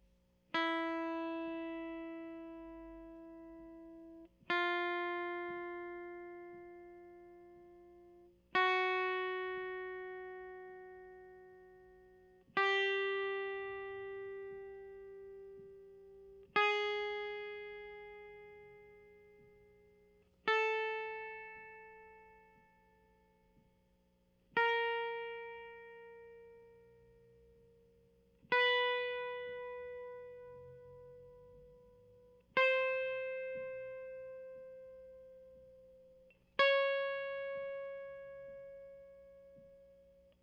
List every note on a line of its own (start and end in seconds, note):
0.54 4.27 E4
4.50 8.27 F4
8.55 12.19 F#4
12.57 16.46 G4
16.56 19.96 G#4
20.48 22.69 A4
24.57 27.42 A#4
28.52 32.35 B4
32.57 36.31 C5
36.59 40.33 C#5